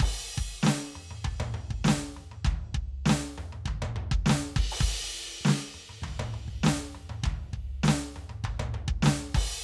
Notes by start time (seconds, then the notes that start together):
0.01 kick, crash
0.38 kick
0.64 snare
0.67 snare
0.96 mid tom
1.11 high tom
1.25 kick, floor tom
1.41 high tom
1.55 mid tom
1.71 kick
1.85 snare
1.89 snare
2.17 mid tom
2.32 high tom
2.46 kick, floor tom
2.75 kick
3.06 snare
3.10 snare
3.39 mid tom
3.53 high tom
3.66 kick, floor tom
3.83 high tom
3.97 mid tom
4.12 kick
4.27 snare
4.30 snare
4.57 kick, ride
4.72 crash
4.81 kick
4.88 ride
5.42 kick
5.46 snare
5.49 snare
5.55 kick
5.75 mid tom
5.90 high tom
6.03 kick, floor tom
6.20 high tom
6.35 mid tom
6.49 kick
6.64 snare
6.67 snare
6.96 mid tom
7.10 high tom
7.24 kick, floor tom
7.54 kick
7.84 snare
7.89 snare
8.17 mid tom
8.30 high tom
8.45 kick, floor tom
8.60 high tom
8.75 mid tom
8.89 kick
9.03 snare
9.07 snare
9.35 kick, crash